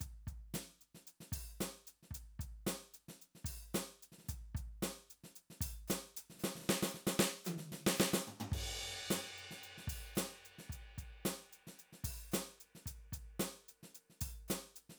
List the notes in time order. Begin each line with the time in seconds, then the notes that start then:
0.01 kick, closed hi-hat
0.27 kick, closed hi-hat
0.54 snare, closed hi-hat
0.81 closed hi-hat
0.95 snare
1.07 closed hi-hat
1.21 snare
1.32 kick, open hi-hat
1.61 snare, closed hi-hat, hi-hat pedal
1.87 closed hi-hat
2.03 snare
2.11 kick, closed hi-hat
2.40 kick, closed hi-hat
2.67 snare, closed hi-hat
2.94 closed hi-hat
3.09 snare
3.22 closed hi-hat
3.35 snare
3.45 kick, open hi-hat
3.74 snare, closed hi-hat, hi-hat pedal
4.03 closed hi-hat
4.12 snare
4.19 snare
4.25 snare
4.29 kick, snare, closed hi-hat
4.55 kick, closed hi-hat
4.83 snare, closed hi-hat
5.10 closed hi-hat
5.24 snare
5.36 closed hi-hat
5.50 snare
5.61 kick, open hi-hat
5.88 snare, closed hi-hat, hi-hat pedal
6.17 closed hi-hat
6.30 snare
6.35 snare
6.39 snare, hi-hat pedal
6.44 snare
6.56 snare
6.59 snare
6.62 snare
6.66 snare
6.83 snare
6.88 hi-hat pedal
6.95 snare
7.07 snare
7.20 snare
7.45 hi-hat pedal, high tom
7.58 snare
7.72 snare
7.87 snare
7.97 snare, hi-hat pedal
8.14 snare
8.28 floor tom
8.40 floor tom
8.52 kick, ride
9.11 snare, closed hi-hat
9.38 closed hi-hat
9.51 snare
9.64 closed hi-hat
9.78 snare
9.88 kick, open hi-hat
10.16 snare, closed hi-hat, hi-hat pedal
10.45 closed hi-hat
10.59 snare
10.70 kick, closed hi-hat
10.98 kick, closed hi-hat
11.25 snare, closed hi-hat
11.53 closed hi-hat
11.67 snare
11.79 closed hi-hat
11.93 snare
12.04 kick, open hi-hat
12.32 snare, closed hi-hat, hi-hat pedal
12.60 closed hi-hat
12.75 snare
12.86 kick, closed hi-hat
13.13 kick, closed hi-hat
13.40 snare, closed hi-hat
13.69 closed hi-hat
13.83 snare
13.95 closed hi-hat
14.10 snare
14.21 kick, open hi-hat
14.48 snare, closed hi-hat, hi-hat pedal
14.76 closed hi-hat
14.90 snare